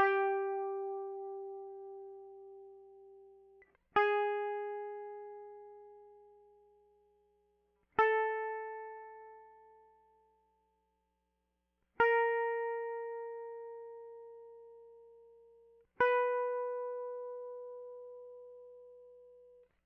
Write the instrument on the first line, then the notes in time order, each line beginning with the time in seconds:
electric guitar
0.00 G4
3.97 G#4
7.99 A4
12.01 A#4
16.01 B4